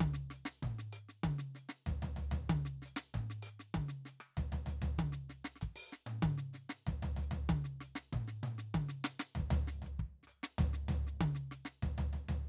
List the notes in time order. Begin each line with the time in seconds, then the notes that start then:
0.01 kick, high tom
0.07 kick
0.14 snare
0.31 snare, hi-hat pedal
0.46 snare
0.63 kick, mid tom
0.70 kick
0.79 snare
0.93 closed hi-hat, hi-hat pedal
1.09 snare
1.24 kick, high tom
1.39 snare
1.55 snare, hi-hat pedal
1.69 snare
1.87 kick, floor tom
2.03 floor tom
2.17 floor tom
2.22 hi-hat pedal
2.32 floor tom
2.50 kick, high tom
2.66 snare
2.83 snare, hi-hat pedal
2.97 snare
3.15 kick, mid tom
3.22 kick
3.31 snare
3.43 closed hi-hat, hi-hat pedal
3.60 snare
3.75 kick, high tom
3.89 snare
4.06 snare, hi-hat pedal
4.21 cross-stick
4.38 kick, floor tom
4.53 floor tom
4.67 floor tom, hi-hat pedal
4.82 floor tom
4.99 kick, high tom
5.05 kick
5.13 snare
5.30 snare, hi-hat pedal
5.45 snare
5.56 snare
5.62 kick, closed hi-hat
5.76 closed hi-hat
5.92 snare, hi-hat pedal
6.07 mid tom
6.23 kick, high tom
6.38 snare
6.54 snare, hi-hat pedal
6.70 snare
6.87 kick, floor tom
7.03 floor tom
7.17 floor tom
7.22 hi-hat pedal
7.32 floor tom
7.50 kick, high tom
7.56 kick
7.65 snare
7.81 snare, hi-hat pedal
7.96 snare
8.13 kick, mid tom
8.21 kick
8.28 snare
8.44 hi-hat pedal, mid tom
8.59 snare
8.75 kick, high tom
8.81 kick
8.89 snare
9.05 snare, hi-hat pedal
9.20 snare
9.36 floor tom
9.40 kick
9.51 floor tom
9.68 snare, hi-hat pedal
9.82 floor tom
9.87 closed hi-hat
10.00 kick
10.24 snare
10.28 cross-stick, hi-hat pedal
10.44 snare
10.59 kick, floor tom
10.67 kick
10.74 snare
10.89 floor tom, hi-hat pedal
11.07 snare
11.21 kick, high tom
11.27 kick
11.35 snare
11.52 snare, hi-hat pedal
11.66 snare
11.83 kick, floor tom
11.98 floor tom
12.13 floor tom, hi-hat pedal
12.29 floor tom